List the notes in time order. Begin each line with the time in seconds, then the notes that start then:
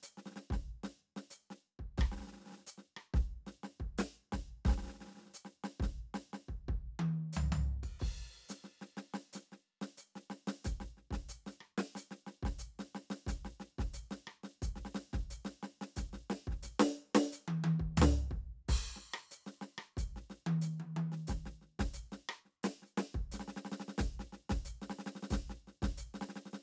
0.04 hi-hat pedal
0.18 snare
0.27 snare
0.32 snare
0.37 snare
0.51 kick, snare
0.84 snare
1.17 snare
1.31 hi-hat pedal
1.51 snare
1.80 kick
1.98 kick, cross-stick, snare
2.13 snare
2.18 snare
2.21 snare
2.24 snare
2.28 snare
2.33 snare
2.37 snare
2.41 snare
2.45 snare
2.47 snare
2.50 snare
2.53 snare
2.58 snare
2.61 snare
2.68 hi-hat pedal
2.78 snare
2.97 cross-stick
3.15 kick, snare
3.47 snare
3.64 snare
3.81 kick
3.99 snare, hi-hat pedal
4.33 kick, snare
4.66 kick, snare
4.69 snare
4.72 snare
4.79 snare
4.83 snare
4.87 snare
4.89 snare
4.95 snare
5.00 snare
5.01 snare
5.05 snare
5.08 snare
5.11 snare
5.18 snare
5.20 snare
5.23 snare
5.26 snare
5.30 snare
5.35 hi-hat pedal
5.46 snare
5.65 snare
5.81 kick, snare
6.15 snare
6.34 snare
6.49 kick
6.69 kick
7.00 high tom
7.34 floor tom, hi-hat pedal
7.53 floor tom
7.84 kick, ride
8.00 kick, crash
8.50 snare, hi-hat pedal
8.65 snare
8.82 snare
8.98 snare
9.15 snare
9.34 snare, hi-hat pedal
9.53 snare
9.82 snare
9.98 hi-hat pedal
10.16 snare
10.31 snare
10.48 snare
10.65 kick, snare, hi-hat pedal
10.81 snare
10.98 snare
11.12 kick, snare
11.30 hi-hat pedal
11.47 snare, hi-hat pedal
11.61 cross-stick
11.79 snare
11.96 snare, hi-hat pedal
12.12 snare
12.27 snare
12.43 kick, snare
12.59 hi-hat pedal
12.80 snare, hi-hat pedal
12.96 snare
13.11 snare
13.27 kick, snare, hi-hat pedal
13.46 snare
13.61 snare
13.79 kick, snare
13.94 hi-hat pedal
14.12 snare
14.28 cross-stick
14.44 snare
14.63 kick, hi-hat pedal
14.77 snare
14.86 snare
14.95 snare
15.14 kick, snare
15.31 hi-hat pedal
15.46 snare
15.64 snare
15.82 snare
15.97 kick, snare, hi-hat pedal
16.14 snare
16.31 snare
16.48 kick, snare
16.63 snare, hi-hat pedal
16.80 snare, hi-hat pedal
17.16 snare
17.33 hi-hat pedal
17.49 high tom
17.65 high tom
17.80 kick
17.98 floor tom, hi-hat pedal
18.03 snare
18.32 kick
18.69 kick, hi-hat pedal, crash
18.97 snare
19.14 cross-stick
19.32 hi-hat pedal
19.47 snare
19.62 snare
19.79 cross-stick
19.98 kick, hi-hat pedal
20.17 snare
20.31 snare
20.47 high tom
20.62 snare, hi-hat pedal
20.81 high tom
20.97 high tom
21.13 snare
21.28 kick, snare, hi-hat pedal
21.46 snare
21.62 snare
21.80 kick, snare
21.94 hi-hat pedal
22.13 snare
22.30 cross-stick
22.46 snare
22.64 snare, hi-hat pedal
22.83 snare, hi-hat pedal
22.98 snare
23.15 kick
23.32 snare, hi-hat pedal
23.40 snare
23.49 snare
23.57 snare
23.66 snare
23.73 snare
23.81 snare
23.89 snare
23.99 kick, snare, hi-hat pedal
24.20 snare, hi-hat pedal
24.33 snare
24.50 kick, snare
24.66 hi-hat pedal
24.83 snare
24.90 snare
24.99 snare
25.07 snare
25.16 snare
25.23 snare
25.31 kick, snare, hi-hat pedal
25.50 snare
25.68 snare
25.83 kick, snare
25.98 hi-hat pedal
26.15 snare
26.22 snare, hi-hat pedal
26.30 snare
26.37 snare
26.46 snare
26.54 snare